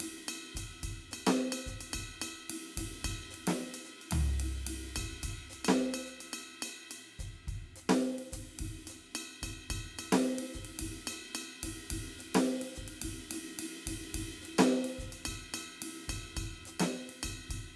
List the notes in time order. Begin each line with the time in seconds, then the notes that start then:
0.01 hi-hat pedal, ride
0.29 ride bell
0.56 kick, hi-hat pedal, ride bell
0.84 kick, ride bell
0.93 kick
1.12 hi-hat pedal, ride bell
1.27 snare, ride bell
1.53 ride bell
1.67 kick, hi-hat pedal
1.81 ride bell
1.94 kick, ride bell
2.01 kick
2.22 hi-hat pedal, ride bell
2.50 ride
2.78 kick, hi-hat pedal, ride
2.83 kick
3.05 kick, ride bell
3.14 kick
3.31 hi-hat pedal, ride
3.48 snare, ride
3.75 ride bell
3.85 hi-hat pedal
4.02 ride bell
4.12 floor tom, ride
4.40 hi-hat pedal, ride
4.67 ride
4.97 kick, hi-hat pedal, ride bell
5.03 kick
5.24 kick, ride bell
5.33 kick
5.50 hi-hat pedal, ride bell
5.66 snare, ride bell
5.95 ride bell
6.07 hi-hat pedal
6.21 ride bell
6.34 ride bell
6.63 hi-hat pedal, ride bell
6.92 ride bell
7.20 kick, hi-hat pedal, ride bell
7.48 kick, ride bell
7.58 kick
7.77 hi-hat pedal, ride
7.90 snare, ride
8.19 ride
8.33 kick, hi-hat pedal, ride
8.60 kick, ride
8.67 kick
8.88 hi-hat pedal, ride bell
9.16 ride bell
9.43 kick, hi-hat pedal, ride bell
9.71 kick, ride bell
9.76 kick
9.99 hi-hat pedal, ride bell
10.13 snare, ride
10.39 ride
10.54 kick, hi-hat pedal
10.66 ride
10.80 kick, closed hi-hat, ride
11.08 hi-hat pedal, ride bell
11.36 ride bell
11.64 kick, hi-hat pedal, ride
11.91 kick, ride
11.97 kick
12.19 hi-hat pedal, ride
12.35 snare, ride
12.62 snare, ride
12.68 snare
12.76 kick, hi-hat pedal
12.89 ride
13.02 kick, ride
13.32 hi-hat pedal, ride
13.60 ride
13.87 kick, hi-hat pedal, ride
14.15 kick, ride
14.23 kick
14.42 hi-hat pedal, ride
14.59 snare, ride bell
14.85 ride
14.99 kick, hi-hat pedal
15.10 snare, ride bell
15.26 kick, ride bell
15.55 hi-hat pedal, ride bell
15.83 ride
16.09 kick, hi-hat pedal, ride bell
16.37 kick, ride bell
16.66 hi-hat pedal, ride
16.80 snare, ride bell
17.10 ride
17.24 kick, hi-hat pedal, ride bell
17.50 kick, ride bell
17.56 kick